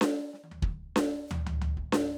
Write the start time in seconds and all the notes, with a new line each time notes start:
0.01 snare
0.33 snare
0.44 high tom
0.51 floor tom
0.62 kick
0.96 snare
1.27 floor tom, hi-hat pedal
1.47 floor tom
1.62 floor tom
1.77 kick
1.92 snare